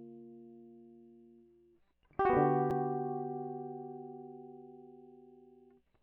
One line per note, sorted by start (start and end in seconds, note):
2.20 5.80 G4
2.26 5.76 F#4
2.31 5.81 B3
2.39 5.55 D3